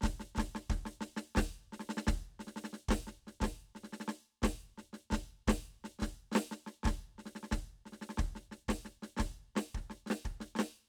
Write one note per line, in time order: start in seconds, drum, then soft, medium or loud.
0.01 kick medium
0.01 snare soft
0.04 snare medium
0.20 snare soft
0.35 kick medium
0.35 snare soft
0.39 snare medium
0.55 snare soft
0.70 kick medium
0.70 snare soft
0.86 snare soft
1.01 snare medium
1.17 snare medium
1.35 kick medium
1.35 snare medium
1.37 snare medium
1.72 snare soft
1.80 snare soft
1.89 snare medium
1.97 snare medium
2.07 kick medium
2.07 snare medium
2.39 snare soft
2.47 snare soft
2.56 snare soft
2.64 snare soft
2.73 snare soft
2.88 kick medium
2.88 snare soft
2.91 snare medium
3.07 snare soft
3.27 snare soft
3.40 kick medium
3.40 snare soft
3.43 snare medium
3.75 snare soft
3.83 snare soft
3.93 snare soft
4.00 snare soft
4.08 snare medium
4.42 kick medium
4.42 snare soft
4.44 snare medium
4.78 snare soft
4.93 snare soft
5.10 kick medium
5.10 snare soft
5.13 snare medium
5.48 kick medium
5.48 snare soft
5.48 snare loud
5.84 snare soft
5.99 snare soft
6.02 kick soft
6.02 snare medium
6.32 snare medium
6.35 snare loud
6.51 snare soft
6.66 snare soft
6.83 kick medium
6.83 snare soft
6.86 snare medium
7.18 snare soft
7.26 snare soft
7.35 snare soft
7.43 snare soft
7.51 kick medium
7.51 snare medium
7.86 snare soft
7.92 snare soft
8.01 snare soft
8.09 snare soft
8.17 kick medium
8.17 snare medium
8.35 snare soft
8.51 snare soft
8.68 kick soft
8.68 snare soft
8.68 snare medium
8.85 snare soft
9.02 snare soft
9.17 snare soft
9.19 kick medium
9.19 snare medium
9.55 snare soft
9.55 snare medium
9.75 kick medium
9.75 snare soft
9.90 snare soft
10.06 snare soft
10.10 snare medium
10.25 kick medium
10.25 snare soft
10.40 snare soft
10.55 snare soft
10.59 snare medium